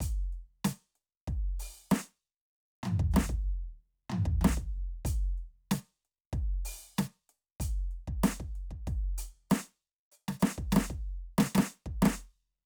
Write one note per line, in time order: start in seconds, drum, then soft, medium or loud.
0.01 closed hi-hat loud
0.01 kick medium
0.33 closed hi-hat soft
0.65 closed hi-hat loud
0.65 snare loud
0.96 closed hi-hat soft
1.28 kick medium
1.28 closed hi-hat soft
1.60 open hi-hat loud
1.91 closed hi-hat medium
1.91 snare loud
1.91 hi-hat pedal soft
2.84 hi-hat pedal medium
2.84 mid tom loud
2.84 high tom loud
3.00 kick medium
3.12 floor tom loud
3.12 hi-hat pedal soft
3.17 snare loud
3.30 kick medium
4.10 mid tom loud
4.10 high tom loud
4.26 kick medium
4.42 snare loud
4.42 floor tom loud
4.58 kick medium
5.06 closed hi-hat loud
5.06 kick medium
5.38 closed hi-hat soft
5.72 closed hi-hat loud
5.72 snare loud
6.06 closed hi-hat soft
6.33 kick medium
6.33 closed hi-hat soft
6.66 open hi-hat loud
6.98 snare loud
6.98 closed hi-hat medium
6.98 hi-hat pedal medium
7.30 closed hi-hat soft
7.61 closed hi-hat loud
7.61 kick medium
7.92 closed hi-hat soft
8.08 kick medium
8.24 closed hi-hat loud
8.24 snare loud
8.40 kick medium
8.56 closed hi-hat soft
8.71 kick soft
8.88 kick medium
8.88 closed hi-hat soft
9.19 open hi-hat loud
9.51 closed hi-hat loud
9.51 snare loud
9.51 hi-hat pedal medium
10.12 hi-hat pedal soft
10.29 snare medium
10.40 snare loud
10.40 hi-hat pedal medium
10.58 kick medium
10.71 snare loud
10.71 hi-hat pedal soft
10.77 snare loud
10.91 kick medium
11.39 snare loud
11.41 snare loud
11.55 snare loud
11.59 snare loud
11.86 kick medium
12.03 snare loud
12.06 snare loud